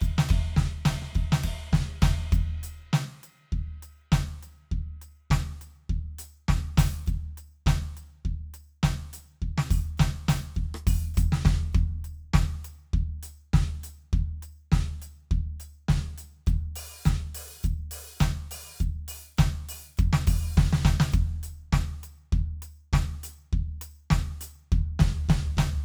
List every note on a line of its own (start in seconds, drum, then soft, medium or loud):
0.02 kick loud
0.02 ride medium
0.02 percussion medium
0.19 snare loud
0.30 kick loud
0.30 ride bell loud
0.57 kick medium
0.57 snare loud
0.86 kick medium
0.86 snare loud
0.86 ride bell loud
1.03 snare medium
1.09 snare soft
1.14 kick loud
1.14 snare soft
1.14 ride medium
1.33 snare loud
1.45 kick medium
1.45 ride loud
1.74 kick medium
1.74 snare loud
2.03 kick loud
2.03 snare loud
2.03 ride bell loud
2.33 kick loud
2.33 percussion medium
2.64 percussion loud
2.94 snare loud
3.24 percussion medium
3.53 kick medium
3.53 crash soft
3.83 percussion medium
4.13 kick medium
4.13 snare loud
4.44 percussion medium
4.72 kick medium
5.02 percussion medium
5.31 kick medium
5.31 snare loud
5.62 percussion medium
5.90 kick medium
5.90 ride soft
6.19 percussion loud
6.49 kick loud
6.49 snare loud
6.78 kick loud
6.78 snare loud
6.78 percussion loud
7.07 kick medium
7.07 percussion medium
7.38 percussion medium
7.67 kick loud
7.67 snare loud
7.98 percussion medium
8.26 kick medium
8.55 percussion medium
8.84 kick medium
8.84 snare loud
9.14 percussion loud
9.43 kick medium
9.59 snare loud
9.71 kick loud
9.71 percussion loud
9.98 kick medium
9.98 snare loud
9.98 percussion soft
10.29 kick medium
10.29 snare loud
10.29 percussion loud
10.56 kick medium
10.56 percussion soft
10.75 cross-stick medium
10.88 kick loud
10.88 percussion loud
11.15 kick loud
11.15 percussion medium
11.18 percussion loud
11.33 snare loud
11.46 kick loud
11.46 snare loud
11.74 kick loud
11.74 percussion soft
12.05 percussion medium
12.34 kick loud
12.34 snare loud
12.65 percussion medium
12.94 kick loud
13.24 percussion loud
13.54 kick loud
13.54 snare loud
13.84 percussion loud
14.14 kick loud
14.14 ride soft
14.43 percussion medium
14.73 kick loud
14.73 snare loud
15.03 percussion medium
15.32 kick loud
15.61 percussion medium
15.89 kick medium
15.89 snare loud
16.19 percussion medium
16.47 kick loud
16.47 percussion medium
16.77 percussion loud
17.06 kick loud
17.06 snare loud
17.06 percussion medium
17.36 percussion loud
17.64 kick loud
17.64 percussion medium
17.92 percussion loud
18.21 kick loud
18.21 snare loud
18.21 percussion medium
18.52 percussion loud
18.81 kick loud
18.81 percussion medium
19.09 percussion loud
19.38 kick loud
19.38 snare loud
19.38 percussion medium
19.70 percussion loud
19.98 kick loud
19.98 percussion medium
20.14 snare loud
20.28 kick loud
20.28 percussion loud
20.58 kick loud
20.58 snare loud
20.74 snare loud
20.86 kick loud
20.86 snare loud
21.01 snare loud
21.13 kick loud
21.13 percussion medium
21.44 percussion loud
21.73 kick loud
21.73 snare loud
22.04 percussion medium
22.33 kick loud
22.63 percussion loud
22.94 kick loud
22.94 snare loud
23.24 percussion loud
23.54 kick loud
23.54 crash soft
23.82 percussion loud
24.11 kick loud
24.11 snare loud
24.42 percussion loud
24.73 kick loud
25.00 kick loud
25.00 snare loud
25.00 floor tom loud
25.30 kick loud
25.30 snare loud
25.30 floor tom loud
25.58 kick medium
25.58 snare loud
25.58 floor tom loud